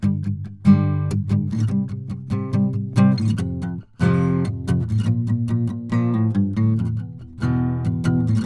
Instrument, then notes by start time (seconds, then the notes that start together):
acoustic guitar
0.01 G2 D3 G3
0.25 G2 D3 G3
0.46 G2
0.66 G2 D3 G3
1.12 D3
1.31 G2 D3 G3
1.49 A2 D3
1.61 A#2 E3
1.70 C3 G3
1.90 C3
2.11 C3
2.31 C3
2.55 C3 G3
2.75 C3 G3
2.97 C3 G3 C4
3.15 A2 F3
3.28 A2 D3
3.40 F2 C3
3.63 F2 C3
4.02 F2 C3 F3
4.46 F2 C3
4.69 E2 C3
4.82 A2
4.91 A2
5.08 A#2
5.29 A#2
5.50 A#2
5.69 A#2
5.93 A#2
6.15 A2
6.36 G2
6.58 A2
6.80 F2
6.88 E2
6.98 E2
7.06 E2
7.43 E2 B2
7.87 E2 B2
8.05 E2 B2
8.30 A2
8.38 A#2